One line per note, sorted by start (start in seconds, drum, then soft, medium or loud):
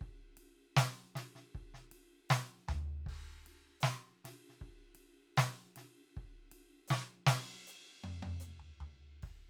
0.01 kick soft
0.37 ride soft
0.76 snare loud
0.76 hi-hat pedal medium
1.15 snare medium
1.15 ride medium
1.35 snare soft
1.55 kick soft
1.74 snare soft
1.92 ride medium
2.29 snare loud
2.29 hi-hat pedal medium
2.68 snare soft
2.68 floor tom loud
3.06 kick soft
3.06 crash soft
3.46 ride soft
3.80 snare loud
3.80 hi-hat pedal medium
3.91 snare soft
4.25 snare soft
4.25 ride medium
4.49 snare soft
4.61 kick soft
4.95 ride soft
5.37 snare loud
5.37 hi-hat pedal medium
5.76 snare soft
5.76 ride medium
6.17 kick soft
6.52 ride medium
6.88 snare loud
6.88 hi-hat pedal medium
7.27 snare loud
7.27 ride medium
7.67 hi-hat pedal medium
8.04 mid tom medium
8.22 mid tom medium
8.40 floor tom soft
8.40 hi-hat pedal medium
8.60 floor tom soft
8.80 floor tom medium
9.23 kick soft
9.23 crash soft